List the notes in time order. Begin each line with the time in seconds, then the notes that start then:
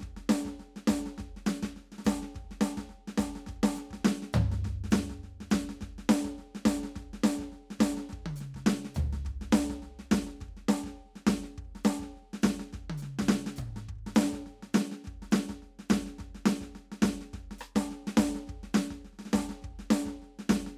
0.01 kick, snare
0.10 kick
0.17 snare
0.30 snare, hi-hat pedal
0.45 kick, snare
0.60 snare
0.77 snare
0.88 kick, snare, hi-hat pedal
1.06 snare
1.19 kick, snare
1.27 kick
1.37 snare
1.47 snare, hi-hat pedal
1.63 kick, snare
1.77 snare
1.82 snare
1.86 snare
1.92 snare
1.99 snare
2.05 kick, snare, hi-hat pedal
2.23 snare
2.35 kick, snare
2.43 kick
2.52 snare
2.62 snare, hi-hat pedal
2.78 kick, snare
2.90 snare
3.08 snare
3.18 kick, snare, hi-hat pedal
3.36 snare
3.47 kick, snare
3.56 kick
3.64 snare
3.76 snare, hi-hat pedal
3.91 kick, snare
4.05 snare
4.23 snare
4.34 kick, hi-hat pedal, floor tom
4.52 snare
4.65 kick, snare
4.72 kick
4.84 snare
4.91 snare, hi-hat pedal
5.10 kick, snare
5.24 snare
5.41 snare
5.51 kick, snare, hi-hat pedal
5.70 snare
5.81 kick, snare
5.89 kick
5.99 snare
6.10 snare, hi-hat pedal
6.25 kick, snare
6.39 snare
6.56 snare
6.66 kick, snare, hi-hat pedal
6.75 kick
6.84 snare
6.96 kick, snare
7.03 kick
7.14 snare
7.24 snare, hi-hat pedal
7.39 kick, snare
7.53 snare
7.71 snare
7.80 kick, snare, hi-hat pedal
7.97 snare
8.10 kick, snare
8.19 kick
8.23 kick, high tom
8.36 hi-hat pedal
8.41 snare
8.55 kick, snare
8.67 snare
8.85 snare
8.95 kick, floor tom, hi-hat pedal
9.03 kick
9.06 kick
9.13 snare
9.26 kick, snare
9.34 kick
9.42 snare
9.53 snare, hi-hat pedal
9.70 kick, snare
9.83 snare
10.00 snare
10.12 kick, snare, hi-hat pedal
10.27 snare
10.41 kick, snare
10.49 kick
10.57 snare
10.69 snare, hi-hat pedal
10.84 kick, snare
11.16 snare
11.27 kick, snare, hi-hat pedal
11.34 kick
11.44 snare
11.56 kick, snare
11.65 kick
11.76 snare
11.85 snare, hi-hat pedal
12.00 kick, snare
12.17 snare
12.34 snare
12.43 kick, snare, hi-hat pedal
12.60 snare
12.73 kick, snare
12.81 kick
12.90 high tom
12.98 hi-hat pedal
13.03 snare
13.19 kick, snare
13.27 kick, snare
13.47 snare
13.57 kick, hi-hat pedal, mid tom
13.65 kick
13.68 kick
13.77 snare
13.89 kick
13.96 kick
13.99 kick
14.07 snare
14.16 snare, hi-hat pedal
14.22 snare
14.33 kick, snare
14.47 snare
14.63 snare
14.74 snare, hi-hat pedal
14.92 snare
15.05 kick, snare
15.14 kick
15.23 snare
15.32 snare, hi-hat pedal
15.50 kick, snare
15.63 snare
15.80 snare
15.90 kick, snare, hi-hat pedal
15.98 kick
16.07 snare
16.19 kick, snare
16.27 kick
16.29 kick
16.35 snare
16.46 snare, hi-hat pedal
16.61 kick, snare
16.76 snare
16.92 snare
17.03 kick, snare, hi-hat pedal
17.09 kick
17.22 snare
17.34 kick, snare
17.41 kick
17.52 snare
17.59 cross-stick, hi-hat pedal
17.76 kick, snare
17.91 snare
18.08 snare
18.18 kick, snare, hi-hat pedal
18.24 kick
18.35 snare
18.48 kick, snare
18.64 snare
18.74 snare, hi-hat pedal
18.91 kick, snare
19.05 snare
19.13 snare
19.18 snare
19.19 snare
19.26 snare
19.31 snare, hi-hat pedal
19.34 kick, snare
19.38 snare
19.43 kick
19.50 snare
19.63 kick, snare
19.71 kick
19.80 snare
19.91 snare, hi-hat pedal
20.06 kick, snare
20.22 snare
20.40 snare
20.50 kick, snare, hi-hat pedal
20.59 kick
20.67 snare